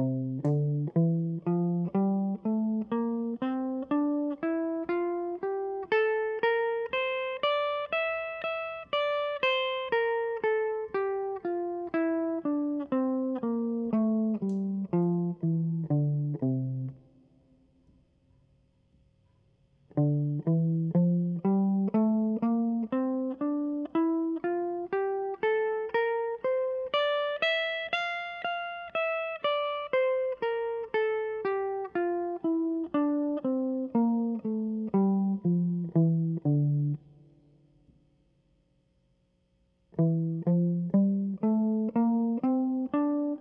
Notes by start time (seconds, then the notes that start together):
0.00 C3
0.46 D3
0.97 E3
1.48 F3
1.95 G3
2.46 A3
2.92 A#3
3.42 C4
3.92 D4
4.43 E4
4.89 F4
5.43 G4
5.92 A4
6.44 A#4
6.94 C5
7.44 D5
7.93 E5
8.44 E5
8.93 D5
9.43 C5
9.93 A#4
10.44 A4
10.95 G4
11.45 F4
11.95 E4
12.46 D4
12.93 C4
13.44 A#3
13.94 A3
14.43 G3
14.94 F3
15.44 E3
15.91 D3
16.44 C3
19.99 D3
20.48 E3
20.96 F3
21.46 G3
21.95 A3
22.43 A#3
22.93 C4
23.42 D4
23.96 E4
24.45 F4
24.93 G4
25.44 A4
25.95 A#4
26.45 C5
26.94 D5
27.43 E5
27.93 F5
28.45 F5
28.96 E5
29.45 D5
29.94 C5
30.43 A#4
30.95 A4
31.45 G4
31.96 F4
32.45 E4
32.95 D4
33.45 C4
33.96 A#3
34.46 A3
34.95 G3
35.46 F3
35.97 E3
36.47 D3
40.00 E3
40.48 E3
40.53 F3
40.95 G3
41.44 A3
41.96 A#3
42.44 C4
42.94 D4